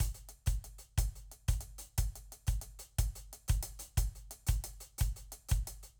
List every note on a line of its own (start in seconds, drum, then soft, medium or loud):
0.00 closed hi-hat loud
0.00 kick medium
0.15 closed hi-hat medium
0.29 closed hi-hat medium
0.46 closed hi-hat loud
0.46 kick medium
0.64 closed hi-hat medium
0.79 closed hi-hat medium
0.98 kick medium
0.98 closed hi-hat loud
1.16 closed hi-hat medium
1.32 closed hi-hat medium
1.48 closed hi-hat loud
1.48 kick medium
1.54 kick soft
1.61 closed hi-hat medium
1.78 closed hi-hat medium
1.98 kick medium
1.98 closed hi-hat loud
2.16 open hi-hat medium
2.32 closed hi-hat medium
2.47 closed hi-hat medium
2.47 kick medium
2.62 closed hi-hat medium
2.79 closed hi-hat medium
2.99 kick medium
2.99 closed hi-hat loud
3.16 closed hi-hat medium
3.33 closed hi-hat medium
3.48 closed hi-hat loud
3.48 kick medium
3.63 closed hi-hat loud
3.79 closed hi-hat loud
3.98 kick medium
3.98 closed hi-hat loud
4.15 closed hi-hat medium
4.31 closed hi-hat medium
4.47 closed hi-hat loud
4.47 kick medium
4.64 closed hi-hat loud
4.81 closed hi-hat medium
4.98 closed hi-hat loud
4.98 kick medium
5.16 closed hi-hat medium
5.32 closed hi-hat medium
5.49 closed hi-hat loud
5.49 kick medium
5.67 closed hi-hat medium
5.83 closed hi-hat medium